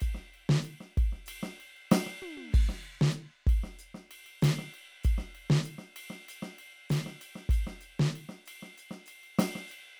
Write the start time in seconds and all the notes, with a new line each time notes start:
0.01 kick, hi-hat pedal, ride
0.15 snare
0.34 ride
0.50 snare
0.62 hi-hat pedal, ride
0.81 snare
0.98 kick, ride
1.13 snare
1.26 hi-hat pedal, ride
1.43 snare
1.60 ride
1.77 ride
1.92 snare, hi-hat pedal, ride
2.07 snare
2.22 floor tom
2.37 floor tom
2.52 kick, hi-hat pedal, crash
2.69 snare
2.83 ride
3.02 snare
3.11 hi-hat pedal
3.47 kick, ride
3.64 snare
3.79 hi-hat pedal, ride
3.95 snare
4.11 ride
4.26 ride
4.42 snare, hi-hat pedal, ride
4.59 snare
4.74 ride
5.04 kick, hi-hat pedal, ride
5.18 snare
5.35 ride
5.50 snare
5.64 hi-hat pedal, ride
5.79 snare
5.96 ride
6.11 snare
6.29 hi-hat pedal, ride
6.43 snare
6.59 ride
6.90 snare, hi-hat pedal, ride
7.07 snare
7.21 hi-hat pedal, ride
7.36 snare
7.43 snare
7.49 kick, hi-hat pedal, ride
7.67 snare
7.81 hi-hat pedal, ride
8.00 snare
8.11 hi-hat pedal
8.16 ride
8.29 snare
8.46 hi-hat pedal, ride
8.63 snare
8.78 hi-hat pedal, ride
8.91 snare
9.06 hi-hat pedal, ride
9.24 ride
9.39 snare, hi-hat pedal, ride
9.56 snare
9.68 hi-hat pedal, ride